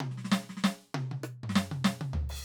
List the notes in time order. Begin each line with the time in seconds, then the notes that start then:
0.00 high tom
0.11 snare
0.18 snare
0.25 snare
0.32 snare
0.43 snare
0.49 snare
0.57 snare
0.64 snare
0.95 high tom
1.11 high tom
1.23 cross-stick
1.43 mid tom
1.49 snare
1.56 snare
1.71 high tom
1.84 snare
2.01 high tom
2.13 floor tom
2.29 crash
2.36 hi-hat pedal